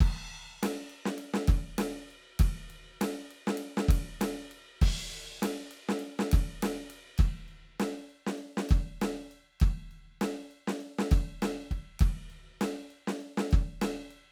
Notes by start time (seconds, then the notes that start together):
0.01 kick, crash
0.63 snare, ride
0.90 ride
1.05 snare
1.18 ride
1.34 snare
1.48 kick, ride
1.78 snare, ride
2.10 ride
2.39 kick, ride
2.70 ride
3.01 snare, ride
3.31 ride
3.47 snare
3.57 ride
3.77 snare
3.89 kick, ride
4.21 snare, ride
4.51 ride
4.82 kick, ride
5.14 ride
5.42 snare, ride
5.71 ride
5.89 snare
5.99 ride
6.19 snare
6.32 kick, ride
6.62 snare, ride
6.90 ride
7.18 kick, ride bell
7.48 ride bell
7.80 snare, ride bell
8.10 ride bell
8.27 snare
8.38 ride bell
8.57 snare
8.69 kick, ride bell
9.02 snare, ride bell
9.31 ride bell
9.60 kick, ride bell
9.91 ride bell
10.21 snare, ride bell
10.51 ride bell
10.68 snare
10.80 ride bell
10.99 snare
11.11 kick, ride bell
11.42 snare, ride bell
11.71 kick, ride
11.99 kick, snare, ride, floor tom
12.30 ride bell
12.61 snare, ride bell
12.90 ride bell
13.07 snare
13.21 ride bell
13.37 snare
13.51 kick, ride bell
13.81 snare, ride bell
14.11 ride